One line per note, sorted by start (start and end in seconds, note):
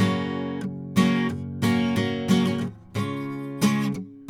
0.00 0.65 C#3
0.00 0.64 F#3
0.00 0.66 A#3
0.00 0.98 C#4
0.00 0.66 F#4
0.62 1.30 F#2
0.62 0.96 C#3
0.98 1.31 C#3
0.98 1.33 F#3
0.98 1.33 A#3
0.98 1.35 C#4
0.98 1.35 F#4
1.31 2.61 F#2
1.31 2.74 C#3
1.64 1.98 F#3
1.64 1.97 A#3
1.64 1.98 C#4
1.64 2.31 F#4
1.98 2.30 F#3
1.98 2.30 A#3
1.98 2.32 C#4
2.30 2.73 F#3
2.30 2.47 A#3
2.30 2.46 C#4
2.30 2.43 F#4
2.47 2.73 A#3
2.47 2.60 C#4
2.61 3.02 E2
2.96 3.63 C#3
2.96 3.62 G#3
2.96 3.65 C#4
2.96 3.64 F4
3.63 3.97 C#3
3.63 3.92 G#3
3.63 3.94 C#4
3.63 3.94 F4